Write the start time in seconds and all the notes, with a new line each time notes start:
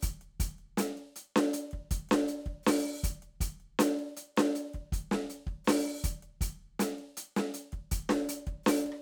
0.01 closed hi-hat, kick, hi-hat pedal
0.21 closed hi-hat
0.40 closed hi-hat, kick
0.58 closed hi-hat
0.78 closed hi-hat, snare
0.97 closed hi-hat
1.16 closed hi-hat
1.36 snare
1.54 closed hi-hat
1.71 kick, closed hi-hat
1.91 closed hi-hat, kick
2.09 snare, closed hi-hat
2.28 closed hi-hat
2.46 kick, closed hi-hat
2.63 snare, hi-hat pedal
2.68 open hi-hat
3.03 closed hi-hat, kick, hi-hat pedal
3.22 closed hi-hat
3.41 closed hi-hat, kick
3.60 closed hi-hat
3.79 closed hi-hat, snare
3.99 closed hi-hat
4.17 closed hi-hat
4.37 snare, closed hi-hat
4.55 closed hi-hat
4.74 kick, closed hi-hat
4.93 closed hi-hat, kick
5.11 snare, closed hi-hat
5.30 closed hi-hat
5.47 kick, closed hi-hat
5.65 open hi-hat, snare, hi-hat pedal
6.03 closed hi-hat, kick, hi-hat pedal
6.23 closed hi-hat
6.41 closed hi-hat, kick
6.63 closed hi-hat
6.80 closed hi-hat, snare
6.99 closed hi-hat
7.17 closed hi-hat
7.37 snare, closed hi-hat
7.54 closed hi-hat
7.72 kick, closed hi-hat
7.92 closed hi-hat, kick
8.10 snare
8.29 closed hi-hat
8.47 kick, closed hi-hat
8.64 snare, hi-hat pedal
8.68 open hi-hat
8.85 kick, closed hi-hat
8.92 cross-stick